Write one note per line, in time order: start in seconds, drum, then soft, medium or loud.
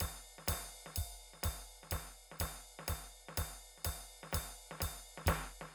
0.01 kick soft
0.01 snare soft
0.01 ride loud
0.39 snare soft
0.48 kick soft
0.48 snare soft
0.48 hi-hat pedal medium
0.48 ride loud
0.54 snare soft
0.87 snare soft
0.94 kick soft
0.94 hi-hat pedal soft
0.94 ride medium
1.34 snare soft
1.44 kick soft
1.44 snare soft
1.44 hi-hat pedal medium
1.44 ride loud
1.84 snare soft
1.92 kick soft
1.92 snare soft
1.92 ride medium
2.32 snare soft
2.40 kick soft
2.40 snare soft
2.40 hi-hat pedal medium
2.40 ride loud
2.80 snare soft
2.86 kick soft
2.86 snare soft
2.86 hi-hat pedal soft
2.86 ride medium
3.29 snare soft
3.38 kick soft
3.38 snare soft
3.38 hi-hat pedal medium
3.38 ride loud
3.78 snare soft
3.85 kick soft
3.85 snare soft
3.85 ride loud
4.24 snare soft
4.33 kick soft
4.33 snare soft
4.33 hi-hat pedal medium
4.33 ride loud
4.72 snare soft
4.80 kick soft
4.80 snare soft
4.80 hi-hat pedal soft
4.80 ride loud
5.18 snare soft
5.27 kick soft
5.27 snare medium
5.27 hi-hat pedal medium
5.27 ride medium
5.62 snare soft